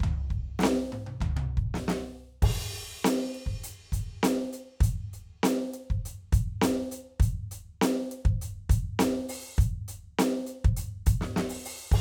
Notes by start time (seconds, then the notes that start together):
0.01 kick, floor tom
0.31 kick
0.60 snare
0.64 snare
0.93 mid tom
1.07 high tom
1.21 kick, floor tom
1.37 high tom
1.58 kick
1.75 snare
1.89 snare
2.43 kick, crash
2.73 open hi-hat
3.05 closed hi-hat, snare
3.35 closed hi-hat
3.47 kick
3.64 closed hi-hat
3.93 closed hi-hat, kick
4.24 closed hi-hat, snare
4.54 closed hi-hat
4.81 closed hi-hat, kick
5.14 closed hi-hat
5.44 closed hi-hat, snare
5.74 closed hi-hat
5.91 kick
6.06 closed hi-hat
6.33 closed hi-hat, kick
6.62 closed hi-hat, snare
6.92 closed hi-hat
7.21 closed hi-hat, kick
7.52 closed hi-hat
7.82 closed hi-hat, snare
8.12 closed hi-hat
8.26 kick
8.42 closed hi-hat
8.70 closed hi-hat, kick
9.00 closed hi-hat, snare
9.30 open hi-hat
9.57 closed hi-hat, kick, hi-hat pedal
9.89 closed hi-hat
10.20 closed hi-hat, snare
10.47 closed hi-hat
10.65 kick
10.77 closed hi-hat
11.07 closed hi-hat, kick
11.22 snare
11.37 snare
11.50 open hi-hat
11.66 open hi-hat
11.92 kick, hi-hat pedal, crash